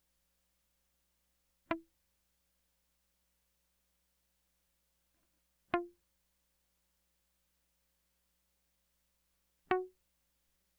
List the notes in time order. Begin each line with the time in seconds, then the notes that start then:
1.71 E4
5.74 F4
9.71 F#4